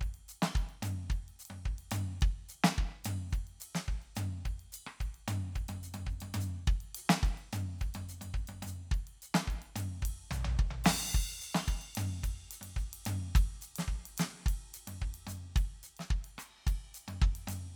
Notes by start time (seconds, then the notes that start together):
0.01 kick, ride
0.14 ride
0.28 hi-hat pedal, ride
0.42 snare
0.55 kick, ride
0.69 ride
0.83 hi-hat pedal, high tom, ride
1.10 kick, ride
1.28 ride
1.39 hi-hat pedal
1.45 ride
1.50 high tom
1.65 kick, hi-hat pedal
1.78 ride
1.91 hi-hat pedal, high tom, ride bell
2.20 kick, hi-hat pedal, ride
2.49 hi-hat pedal, ride
2.64 snare
2.75 kick, hi-hat pedal
3.03 kick, hi-hat pedal, high tom, ride bell
3.30 kick, hi-hat pedal, ride
3.47 ride
3.60 hi-hat pedal, ride
3.75 snare
3.87 kick, hi-hat pedal
4.02 ride
4.16 hi-hat pedal, high tom, ride bell
4.45 kick, ride
4.60 ride
4.72 hi-hat pedal, ride bell
4.87 cross-stick
5.00 kick, hi-hat pedal, ride
5.15 ride
5.28 hi-hat pedal, high tom, ride bell
5.55 kick, hi-hat pedal, ride
5.69 high tom, ride bell
5.83 hi-hat pedal
5.94 high tom, ride bell
6.07 kick, hi-hat pedal
6.21 high tom, ride bell
6.34 high tom, ride bell
6.40 hi-hat pedal
6.67 kick, hi-hat pedal, ride
6.81 ride
6.95 hi-hat pedal, ride
7.09 snare
7.23 kick, ride
7.38 ride
7.53 hi-hat pedal, high tom, ride
7.79 kick, hi-hat pedal, ride
7.94 high tom, ride bell
8.09 hi-hat pedal
8.21 high tom, ride bell
8.34 kick, hi-hat pedal
8.48 high tom, ride bell
8.63 high tom, ride bell
8.67 hi-hat pedal
8.92 kick, ride
9.07 ride
9.22 hi-hat pedal, ride bell
9.34 snare
9.48 kick, hi-hat pedal, ride
9.62 ride
9.76 hi-hat pedal, high tom, ride
10.02 kick, hi-hat pedal, ride
10.31 floor tom, hi-hat pedal
10.45 floor tom
10.59 kick
10.71 floor tom
10.84 snare, hi-hat pedal, crash
11.14 kick, hi-hat pedal, ride
11.41 hi-hat pedal, ride
11.55 snare
11.68 kick, hi-hat pedal, ride
11.81 ride
11.95 hi-hat pedal, high tom, ride
12.24 kick, hi-hat pedal, ride
12.51 hi-hat pedal, ride
12.61 high tom, ride
12.76 kick, hi-hat pedal
12.93 ride
13.06 hi-hat pedal, high tom, ride
13.35 kick, ride
13.61 hi-hat pedal, ride
13.76 snare, ride
13.88 kick
14.06 ride
14.17 kick, snare, hi-hat pedal, ride
14.46 kick, ride
14.74 kick, hi-hat pedal, ride
14.88 high tom, ride
15.02 kick
15.14 ride
15.27 kick, hi-hat pedal, high tom, ride
15.56 kick, ride
15.83 kick, hi-hat pedal, ride
15.97 snare, ride
16.11 kick
16.25 ride
16.38 kick, cross-stick, hi-hat pedal, ride
16.67 kick, ride
16.94 hi-hat pedal, ride
17.08 high tom, ride
17.22 kick
17.35 ride
17.48 hi-hat pedal, high tom, ride